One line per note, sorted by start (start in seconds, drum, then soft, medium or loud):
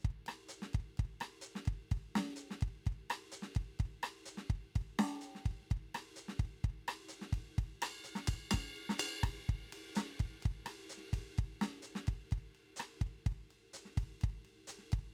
0.01 hi-hat pedal soft
0.01 ride soft
0.06 kick soft
0.11 kick soft
0.27 cross-stick medium
0.27 ride medium
0.50 hi-hat pedal medium
0.63 snare soft
0.74 kick soft
0.74 ride soft
0.81 kick soft
0.98 kick soft
0.98 ride soft
1.06 kick soft
1.22 cross-stick medium
1.22 ride medium
1.42 hi-hat pedal medium
1.56 snare soft
1.66 kick soft
1.66 ride soft
1.73 kick soft
1.92 kick soft
1.92 ride soft
1.98 kick soft
2.16 snare medium
2.16 ride medium
2.37 hi-hat pedal medium
2.52 snare soft
2.62 kick soft
2.62 ride soft
2.68 kick soft
2.87 kick soft
2.87 ride soft
2.93 kick soft
3.11 cross-stick medium
3.11 ride medium
3.33 hi-hat pedal medium
3.43 snare soft
3.56 kick soft
3.56 ride soft
3.62 kick soft
3.80 kick soft
3.80 ride soft
3.86 kick soft
4.04 cross-stick medium
4.04 ride medium
4.26 hi-hat pedal medium
4.38 snare soft
4.51 kick soft
4.51 ride soft
4.56 kick soft
4.76 kick soft
4.76 ride soft
4.82 kick soft
5.00 snare medium
5.00 ride medium
5.22 hi-hat pedal medium
5.36 snare soft
5.47 kick soft
5.47 ride soft
5.52 kick soft
5.62 snare soft
5.72 kick soft
5.72 ride soft
5.77 kick soft
5.96 cross-stick medium
5.96 ride medium
6.17 hi-hat pedal medium
6.29 snare soft
6.40 kick soft
6.40 ride soft
6.46 kick soft
6.65 kick soft
6.65 ride soft
6.70 kick soft
6.89 cross-stick medium
6.89 ride medium
7.09 hi-hat pedal medium
7.14 ride soft
7.22 snare soft
7.34 kick soft
7.34 ride medium
7.39 kick soft
7.59 kick soft
7.59 ride medium
7.64 kick soft
7.83 cross-stick medium
7.83 ride bell loud
8.05 hi-hat pedal medium
8.05 ride soft
8.16 snare soft
8.28 kick soft
8.28 ride bell medium
8.35 kick soft
8.52 kick soft
8.52 snare medium
8.52 ride bell loud
8.77 ride soft
8.90 snare medium
8.99 hi-hat pedal medium
8.99 ride bell loud
9.24 kick soft
9.24 cross-stick medium
9.24 ride loud
9.30 kick soft
9.50 kick soft
9.50 ride soft
9.56 kick soft
9.66 snare soft
9.74 ride medium
9.96 snare medium
9.96 hi-hat pedal medium
9.96 ride medium
10.21 kick soft
10.21 ride medium
10.26 kick soft
10.32 snare soft
10.41 hi-hat pedal soft
10.41 ride medium
10.46 kick soft
10.52 kick soft
10.67 cross-stick medium
10.67 ride medium
10.90 hi-hat pedal medium
10.98 snare soft
11.03 snare soft
11.14 kick soft
11.14 ride medium
11.19 kick soft
11.39 kick soft
11.39 ride soft
11.45 kick soft
11.62 snare medium
11.62 ride medium
11.83 hi-hat pedal medium
11.83 ride soft
11.96 snare soft
12.08 kick soft
12.08 ride soft
12.14 kick soft
12.32 kick soft
12.32 ride soft
12.38 kick soft
12.56 ride soft
12.77 cross-stick medium
12.77 hi-hat pedal medium
12.81 ride soft
13.02 kick soft
13.02 ride soft
13.07 kick soft
13.27 kick soft
13.27 ride soft
13.33 kick soft
13.39 snare soft
13.48 snare soft
13.48 ride soft
13.74 hi-hat pedal medium
13.74 ride soft
13.86 snare soft
13.98 kick soft
13.98 ride medium
14.04 kick soft
14.22 kick soft
14.22 ride soft
14.30 kick soft
14.46 ride soft
14.68 hi-hat pedal medium
14.68 ride medium
14.80 snare soft
14.93 kick soft
14.93 ride medium
15.00 kick soft